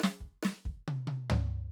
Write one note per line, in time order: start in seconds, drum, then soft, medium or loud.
0.00 cross-stick medium
0.00 snare loud
0.20 kick soft
0.42 cross-stick medium
0.42 snare loud
0.65 kick medium
0.88 high tom loud
1.07 high tom loud
1.30 floor tom loud